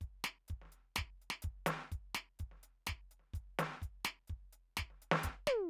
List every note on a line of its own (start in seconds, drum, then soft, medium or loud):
0.01 kick soft
0.01 closed hi-hat soft
0.24 closed hi-hat medium
0.24 snare medium
0.48 closed hi-hat soft
0.48 kick soft
0.62 snare soft
0.65 snare soft
0.72 closed hi-hat soft
0.96 closed hi-hat medium
0.96 kick soft
0.96 snare medium
1.22 closed hi-hat soft
1.30 snare medium
1.42 closed hi-hat medium
1.42 kick soft
1.66 closed hi-hat loud
1.66 snare medium
1.92 closed hi-hat soft
1.92 kick soft
2.15 closed hi-hat medium
2.15 snare medium
2.39 closed hi-hat soft
2.39 kick soft
2.51 snare soft
2.57 snare soft
2.63 closed hi-hat soft
2.87 closed hi-hat medium
2.87 kick soft
2.87 snare medium
3.11 closed hi-hat soft
3.19 snare soft
3.34 closed hi-hat soft
3.34 kick soft
3.59 closed hi-hat medium
3.59 snare medium
3.82 closed hi-hat soft
3.82 kick soft
4.05 closed hi-hat loud
4.05 snare medium
4.27 closed hi-hat soft
4.27 kick soft
4.53 closed hi-hat soft
4.77 closed hi-hat medium
4.77 kick soft
4.77 snare medium
4.90 snare soft
5.02 closed hi-hat soft
5.11 snare loud
5.23 closed hi-hat loud
5.23 kick soft
5.47 snare medium
5.47 high tom loud